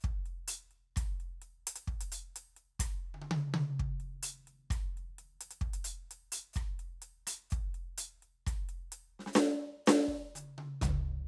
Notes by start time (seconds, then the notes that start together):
0.01 kick, closed hi-hat, hi-hat pedal
0.26 closed hi-hat
0.48 closed hi-hat
0.71 closed hi-hat
0.96 kick, cross-stick, closed hi-hat
1.01 cross-stick
1.21 closed hi-hat
1.42 closed hi-hat
1.67 closed hi-hat
1.76 closed hi-hat
1.88 kick
2.01 closed hi-hat
2.12 closed hi-hat
2.36 closed hi-hat
2.57 closed hi-hat
2.80 kick, cross-stick, closed hi-hat
3.15 high tom
3.22 high tom
3.31 high tom
3.54 high tom
3.80 kick
4.00 closed hi-hat
4.23 closed hi-hat
4.48 closed hi-hat
4.71 kick, cross-stick, closed hi-hat
4.98 closed hi-hat
5.19 closed hi-hat
5.41 closed hi-hat
5.51 closed hi-hat
5.62 kick
5.74 closed hi-hat
5.85 closed hi-hat
6.11 closed hi-hat
6.32 open hi-hat
6.54 kick, cross-stick, closed hi-hat, hi-hat pedal
6.80 closed hi-hat
7.02 closed hi-hat
7.27 open hi-hat, cross-stick
7.51 kick, closed hi-hat, hi-hat pedal
7.75 closed hi-hat
7.98 closed hi-hat
8.23 closed hi-hat
8.47 kick, cross-stick, closed hi-hat
8.69 closed hi-hat
8.92 closed hi-hat
9.20 snare
9.27 snare
9.34 snare, hi-hat pedal
9.87 snare, hi-hat pedal
10.08 kick
10.36 hi-hat pedal, high tom
10.58 high tom
10.82 kick, floor tom, hi-hat pedal, high tom